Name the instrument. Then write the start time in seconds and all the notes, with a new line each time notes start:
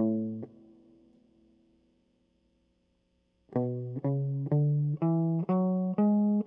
electric guitar
0.01 A2
3.57 B2
4.06 C#3
4.53 D3
5.03 E3
5.50 F#3
5.99 G#3